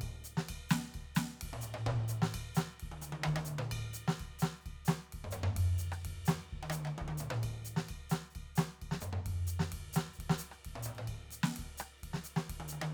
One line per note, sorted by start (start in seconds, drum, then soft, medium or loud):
0.01 kick soft
0.01 ride bell medium
0.09 kick soft
0.24 hi-hat pedal medium
0.24 ride soft
0.37 snare medium
0.49 kick soft
0.49 ride bell medium
0.56 kick soft
0.69 snare loud
0.69 hi-hat pedal medium
0.94 kick soft
0.94 ride bell soft
1.15 snare medium
1.15 hi-hat pedal medium
1.41 kick soft
1.41 ride medium
1.50 kick soft
1.50 mid tom medium
1.61 hi-hat pedal medium
1.74 mid tom medium
1.86 kick soft
1.86 mid tom loud
1.93 kick soft
2.08 hi-hat pedal medium
2.08 mid tom soft
2.22 snare medium
2.30 hi-hat pedal soft
2.30 ride bell medium
2.35 kick soft
2.55 snare medium
2.55 hi-hat pedal medium
2.80 kick soft
2.80 ride medium
2.92 high tom medium
3.02 hi-hat pedal medium
3.02 high tom medium
3.12 high tom medium
3.24 kick soft
3.24 high tom loud
3.36 high tom loud
3.45 hi-hat pedal medium
3.45 mid tom soft
3.58 mid tom medium
3.71 kick soft
3.71 ride bell loud
3.93 hi-hat pedal loud
3.93 ride soft
4.08 snare medium
4.15 hi-hat pedal soft
4.20 kick soft
4.20 ride bell medium
4.39 snare medium
4.39 hi-hat pedal medium
4.60 hi-hat pedal soft
4.66 kick soft
4.66 ride bell soft
4.85 snare loud
4.85 hi-hat pedal medium
5.12 kick soft
5.12 ride medium
5.24 floor tom medium
5.31 hi-hat pedal medium
5.31 floor tom medium
5.43 floor tom loud
5.56 kick soft
5.56 ride medium
5.62 kick soft
5.78 hi-hat pedal medium
5.78 ride soft
5.92 cross-stick medium
6.05 kick soft
6.05 ride medium
6.25 snare loud
6.25 hi-hat pedal medium
6.53 kick soft
6.63 high tom medium
6.70 hi-hat pedal medium
6.70 high tom loud
6.85 high tom medium
6.87 high tom soft
6.98 kick soft
6.98 high tom medium
7.08 kick soft
7.08 high tom medium
7.17 hi-hat pedal medium
7.17 mid tom medium
7.30 mid tom loud
7.43 kick soft
7.43 ride bell medium
7.65 hi-hat pedal medium
7.65 ride soft
7.76 snare medium
7.85 hi-hat pedal soft
7.85 ride bell medium
7.90 kick soft
8.10 snare medium
8.10 hi-hat pedal medium
8.30 hi-hat pedal soft
8.35 kick soft
8.35 ride bell soft
8.55 snare loud
8.55 hi-hat pedal medium
8.82 kick soft
8.82 ride bell soft
8.91 snare medium
9.01 floor tom medium
9.01 hi-hat pedal medium
9.13 floor tom medium
9.26 kick soft
9.26 ride medium
9.47 hi-hat pedal medium
9.47 ride soft
9.59 snare medium
9.67 hi-hat pedal soft
9.72 kick soft
9.72 ride medium
9.93 snare medium
9.93 hi-hat pedal loud
10.13 hi-hat pedal soft
10.19 kick soft
10.19 ride medium
10.30 snare medium
10.38 hi-hat pedal loud
10.42 ride medium
10.51 cross-stick soft
10.65 kick soft
10.65 ride medium
10.73 kick soft
10.73 mid tom medium
10.82 hi-hat pedal loud
10.82 mid tom medium
10.95 mid tom medium
10.95 ride soft
11.07 kick soft
11.07 ride bell medium
11.31 hi-hat pedal medium
11.31 ride soft
11.43 snare medium
11.56 kick soft
11.56 ride medium
11.77 cross-stick medium
11.77 hi-hat pedal medium
11.98 hi-hat pedal soft
12.03 kick soft
12.03 ride medium
12.13 snare medium
12.24 hi-hat pedal medium
12.24 ride soft
12.36 snare medium
12.50 kick soft
12.50 ride medium
12.57 kick soft
12.57 high tom medium
12.68 hi-hat pedal loud
12.72 high tom medium
12.82 high tom loud